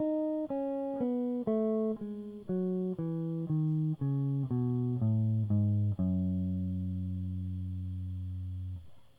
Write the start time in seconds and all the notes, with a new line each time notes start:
0.00 D#4
0.51 C#4
1.01 B3
1.48 A3
1.99 G#3
2.50 F#3
2.99 E3
3.51 D#3
4.03 C#3
4.52 B2
5.03 A2
5.53 G#2
6.01 F#2